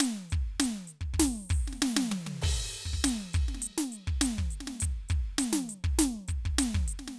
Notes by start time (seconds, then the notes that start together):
0.01 closed hi-hat, snare
0.30 closed hi-hat, kick
0.55 kick
0.60 closed hi-hat, snare
0.87 closed hi-hat
1.01 kick
1.14 kick
1.19 open hi-hat, snare
1.49 open hi-hat, kick
1.67 snare
1.73 snare
1.82 snare
1.86 hi-hat pedal
1.96 snare
2.11 high tom
2.26 high tom
2.39 hi-hat pedal, crash
2.43 kick
2.71 closed hi-hat
2.85 kick
2.93 kick
3.04 closed hi-hat, snare
3.33 closed hi-hat, kick
3.48 snare
3.54 snare
3.60 closed hi-hat, snare
3.78 snare
3.92 closed hi-hat
4.07 kick
4.21 closed hi-hat, snare
4.38 kick
4.50 closed hi-hat
4.60 snare
4.67 snare
4.74 snare
4.80 closed hi-hat, kick
5.08 closed hi-hat, kick
5.38 closed hi-hat, snare
5.53 snare
5.69 closed hi-hat
5.84 kick
5.99 closed hi-hat, snare
6.28 closed hi-hat, kick
6.45 kick
6.58 closed hi-hat, snare
6.74 kick
6.88 closed hi-hat
6.99 snare
7.08 snare